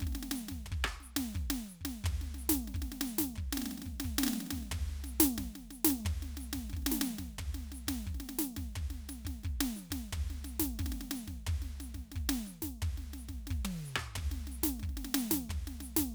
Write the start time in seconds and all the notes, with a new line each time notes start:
0.01 kick, snare
0.07 snare
0.13 snare
0.16 snare
0.23 snare
0.32 snare
0.36 hi-hat pedal
0.49 kick, snare
0.67 floor tom
0.72 kick
0.85 cross-stick
1.01 snare, hi-hat pedal
1.17 kick, snare
1.35 kick, snare
1.51 snare
1.69 hi-hat pedal
1.82 kick
1.86 snare
2.05 kick, floor tom
2.22 snare
2.35 snare, hi-hat pedal
2.50 kick, snare
2.68 snare
2.75 kick, snare
2.83 snare
2.92 snare
3.02 snare
3.07 hi-hat pedal
3.19 kick, snare
3.36 kick, floor tom
3.53 snare
3.58 snare
3.62 snare
3.66 snare, hi-hat pedal
3.72 snare
3.78 snare
3.82 kick, snare
3.87 snare
3.96 snare
4.01 snare
4.05 kick
4.19 snare
4.24 snare
4.27 snare
4.38 snare, hi-hat pedal
4.47 snare
4.51 kick, snare
4.58 snare
4.63 snare
4.67 snare
4.72 kick, snare, floor tom
4.89 snare
5.04 snare, hi-hat pedal
5.20 kick, snare
5.38 kick, snare
5.56 snare
5.71 snare, hi-hat pedal
5.85 kick, snare
5.91 snare
6.06 kick, floor tom
6.23 snare
6.38 snare, hi-hat pedal
6.54 kick, snare
6.70 kick, snare
6.77 snare
6.83 snare
6.87 snare
6.92 snare
7.02 snare, hi-hat pedal
7.19 kick, snare
7.39 kick, floor tom
7.55 snare
7.72 snare, hi-hat pedal
7.88 kick, snare
8.07 kick, snare
8.15 snare
8.21 snare
8.29 snare
8.39 snare, hi-hat pedal
8.57 kick, snare
8.76 kick, floor tom
8.91 snare
9.09 snare, hi-hat pedal
9.26 kick, snare
9.44 kick, snare
9.61 snare
9.76 snare, hi-hat pedal
9.91 kick, snare
10.13 kick, floor tom
10.31 snare
10.45 snare, hi-hat pedal
10.60 kick, snare
10.80 kick, snare
10.87 snare
10.93 snare
11.01 snare
11.12 snare
11.16 hi-hat pedal
11.28 kick, snare
11.47 kick, floor tom
11.62 snare
11.81 snare, hi-hat pedal
11.95 kick, snare
12.12 kick, snare
12.30 snare
12.47 snare, hi-hat pedal
12.63 kick, snare
12.83 kick, floor tom
12.98 snare
13.14 snare
13.19 hi-hat pedal
13.29 kick, snare
13.48 kick, snare
13.65 high tom
13.80 snare
13.86 hi-hat pedal
13.96 kick, cross-stick
14.16 kick, floor tom
14.32 snare
14.48 snare
14.52 hi-hat pedal
14.63 kick, snare
14.80 kick, snare
14.90 snare
14.98 snare
15.05 snare
15.15 snare, hi-hat pedal
15.32 kick, snare
15.50 kick, floor tom
15.68 snare
15.81 snare, hi-hat pedal
15.97 kick, snare